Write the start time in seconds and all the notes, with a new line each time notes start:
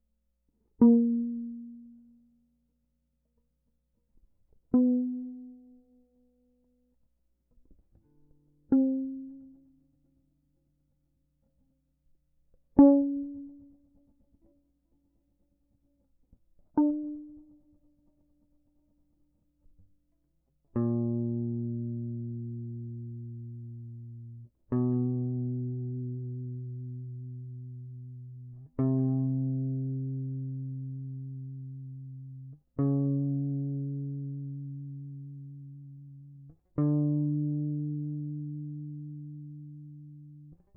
0.83 A#3
4.74 B3
8.73 C4
12.78 C#4
16.78 D4
20.78 A#2
24.73 B2
28.81 C3
32.81 C#3
36.78 D3